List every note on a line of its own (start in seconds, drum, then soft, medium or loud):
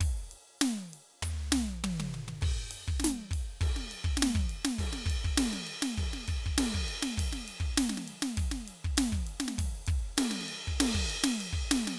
0.01 kick medium
0.01 ride loud
0.29 hi-hat pedal soft
0.29 ride medium
0.58 snare loud
0.58 hi-hat pedal soft
0.63 ride medium
0.88 hi-hat pedal soft
0.94 ride medium
1.08 snare soft
1.11 snare soft
1.16 snare soft
1.23 floor tom loud
1.23 hi-hat pedal loud
1.53 snare loud
1.84 high tom loud
2.00 high tom medium
2.14 mid tom medium
2.28 mid tom medium
2.42 kick medium
2.42 crash medium
2.71 ride loud
2.88 kick medium
3.00 snare medium
3.05 snare loud
3.31 kick medium
3.31 ride medium
3.61 kick medium
3.61 ride medium
3.77 snare medium
3.92 ride medium
4.05 kick medium
4.17 snare medium
4.23 snare loud
4.36 kick medium
4.50 ride medium
4.65 snare loud
4.79 kick medium
4.79 ride medium
4.93 snare medium
5.06 kick medium
5.10 ride medium
5.25 kick medium
5.38 snare loud
5.38 ride medium
5.53 snare soft
5.67 ride medium
5.83 snare loud
5.98 kick medium
5.98 ride medium
6.14 snare medium
6.28 kick medium
6.28 ride medium
6.46 kick medium
6.58 snare loud
6.58 ride loud
6.75 kick medium
6.89 ride medium
7.03 snare medium
7.18 kick medium
7.18 ride loud
7.33 snare medium
7.48 ride medium
7.61 kick medium
7.78 snare loud
7.78 ride loud
7.90 snare medium
7.98 snare medium
8.08 ride medium
8.23 snare medium
8.38 kick medium
8.38 ride loud
8.52 snare medium
8.68 ride medium
8.85 kick medium
8.98 snare loud
8.98 ride loud
9.13 kick medium
9.27 ride medium
9.40 snare medium
9.48 snare medium
9.59 kick medium
9.59 ride loud
9.87 kick medium
9.87 ride medium
10.18 snare loud
10.18 ride loud
10.31 snare medium
10.41 snare soft
10.49 ride medium
10.68 kick medium
10.80 snare loud
10.80 ride loud
10.95 kick medium
11.10 ride medium
11.24 snare loud
11.41 ride medium
11.53 kick medium
11.71 snare loud
11.71 ride medium
11.88 snare medium